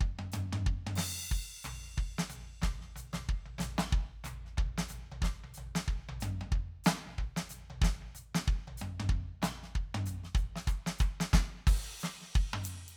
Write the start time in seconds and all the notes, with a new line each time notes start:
0.01 kick, high tom
0.19 high tom
0.32 hi-hat pedal, high tom
0.53 high tom
0.67 kick
0.87 high tom
0.96 snare, hi-hat pedal, crash
1.32 kick, floor tom
1.64 cross-stick, floor tom, hi-hat pedal
1.98 kick, floor tom
2.19 snare
2.30 floor tom, hi-hat pedal
2.62 kick, snare, floor tom
2.81 snare
2.96 floor tom, hi-hat pedal
3.13 snare, floor tom
3.29 kick
3.46 floor tom
3.59 snare, floor tom, hi-hat pedal
3.79 snare
3.92 kick, floor tom
4.24 cross-stick, floor tom, hi-hat pedal
4.46 snare
4.58 kick, floor tom
4.78 snare
4.89 floor tom, hi-hat pedal
5.12 floor tom
5.22 kick, snare
5.44 floor tom
5.54 floor tom, hi-hat pedal
5.76 snare
5.88 kick, floor tom
6.09 floor tom
6.21 hi-hat pedal, high tom
6.41 high tom
6.52 kick, floor tom
6.84 snare, hi-hat pedal
7.07 floor tom
7.19 kick, floor tom
7.37 snare
7.50 kick, floor tom, hi-hat pedal
7.70 floor tom
7.82 kick, snare
8.03 floor tom
8.15 floor tom, hi-hat pedal
8.35 snare
8.48 kick, floor tom
8.68 floor tom
8.78 hi-hat pedal
8.82 high tom
9.00 high tom
9.09 kick, floor tom
9.42 snare, floor tom, hi-hat pedal
9.63 snare
9.76 kick, floor tom
9.95 high tom
10.06 floor tom, hi-hat pedal
10.24 snare
10.35 kick, floor tom, hi-hat pedal
10.56 snare
10.68 kick, cross-stick, hi-hat pedal
10.87 snare
10.99 kick, cross-stick, hi-hat pedal
11.21 snare
11.30 snare, hi-hat pedal
11.34 kick
11.67 kick, crash
12.00 kick, snare, hi-hat pedal
12.22 snare
12.35 kick, ride
12.54 high tom
12.64 hi-hat pedal, ride
12.89 ride